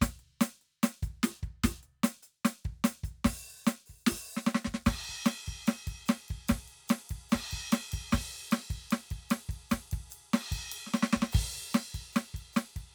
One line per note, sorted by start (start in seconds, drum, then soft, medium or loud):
0.01 closed hi-hat loud
0.01 kick medium
0.01 snare loud
0.01 hi-hat pedal soft
0.19 closed hi-hat soft
0.40 closed hi-hat loud
0.40 snare loud
0.40 hi-hat pedal soft
0.61 closed hi-hat soft
0.83 closed hi-hat loud
0.83 snare loud
1.02 closed hi-hat medium
1.02 kick medium
1.23 closed hi-hat loud
1.23 snare loud
1.43 kick medium
1.43 closed hi-hat soft
1.64 open hi-hat loud
1.64 kick medium
1.64 snare loud
1.64 hi-hat pedal soft
1.83 closed hi-hat soft
2.03 closed hi-hat loud
2.03 snare loud
2.23 closed hi-hat soft
2.45 closed hi-hat loud
2.45 snare loud
2.65 kick medium
2.65 closed hi-hat soft
2.84 closed hi-hat loud
2.84 snare loud
3.03 closed hi-hat medium
3.03 kick medium
3.25 open hi-hat loud
3.25 kick medium
3.25 snare loud
3.45 open hi-hat soft
3.64 closed hi-hat loud
3.64 snare loud
3.64 hi-hat pedal medium
3.86 open hi-hat soft
3.86 kick soft
4.07 open hi-hat loud
4.07 snare loud
4.11 kick soft
4.26 open hi-hat medium
4.37 snare medium
4.47 snare loud
4.47 hi-hat pedal medium
4.55 snare loud
4.65 kick soft
4.65 snare medium
4.74 snare medium
4.86 kick medium
4.86 snare loud
4.86 hi-hat pedal medium
4.86 ride loud
5.04 ride soft
5.09 kick soft
5.24 snare loud
5.24 hi-hat pedal medium
5.24 ride loud
5.47 kick soft
5.47 ride soft
5.66 snare loud
5.66 hi-hat pedal medium
5.66 ride medium
5.87 kick medium
5.87 ride medium
6.06 snare loud
6.06 hi-hat pedal medium
6.06 ride medium
6.28 kick medium
6.28 ride medium
6.48 kick medium
6.48 snare loud
6.48 hi-hat pedal medium
6.48 ride loud
6.61 kick soft
6.68 ride soft
6.88 snare loud
6.88 hi-hat pedal medium
6.88 ride loud
7.09 kick medium
7.09 ride medium
7.29 snare loud
7.29 hi-hat pedal medium
7.29 ride loud
7.35 kick soft
7.51 kick soft
7.51 ride medium
7.71 snare loud
7.71 hi-hat pedal medium
7.71 ride loud
7.92 kick medium
7.92 ride medium
8.12 kick medium
8.12 snare loud
8.12 hi-hat pedal medium
8.12 crash medium
8.51 snare loud
8.51 hi-hat pedal medium
8.51 ride loud
8.58 snare soft
8.70 kick medium
8.70 ride medium
8.91 snare loud
8.91 hi-hat pedal medium
8.91 ride loud
9.11 kick medium
9.11 ride medium
9.29 snare loud
9.29 hi-hat pedal medium
9.29 ride loud
9.49 kick medium
9.49 ride medium
9.70 kick soft
9.70 snare loud
9.70 hi-hat pedal medium
9.70 ride loud
9.91 kick medium
9.91 ride medium
10.10 hi-hat pedal medium
10.10 ride medium
10.34 snare loud
10.34 ride loud
10.52 kick medium
10.52 hi-hat pedal medium
10.52 ride medium
10.72 ride loud
10.87 snare soft
10.94 snare loud
10.94 hi-hat pedal medium
11.03 snare loud
11.16 kick soft
11.22 snare loud
11.31 kick loud
11.31 hi-hat pedal medium
11.31 crash loud
11.58 kick soft
11.72 snare loud
11.72 hi-hat pedal medium
11.72 ride medium
11.94 kick soft
11.94 ride medium
12.13 snare loud
12.13 hi-hat pedal medium
12.13 ride medium
12.34 kick soft
12.34 ride medium
12.53 snare loud
12.53 hi-hat pedal medium
12.57 ride medium
12.76 kick soft
12.76 ride medium